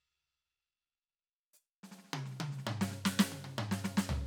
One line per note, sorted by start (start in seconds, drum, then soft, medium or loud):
1.53 hi-hat pedal soft
1.83 snare soft
1.91 snare soft
1.98 snare soft
2.04 snare soft
2.08 snare soft
2.13 high tom loud
2.25 snare soft
2.31 snare soft
2.35 snare soft
2.40 high tom loud
2.51 snare soft
2.58 snare soft
2.64 snare soft
2.64 mid tom loud
2.81 snare loud
3.05 snare loud
3.19 snare loud
3.32 high tom medium
3.44 high tom medium
3.58 mid tom loud
3.71 snare medium
3.84 snare medium
3.97 snare loud
4.09 floor tom loud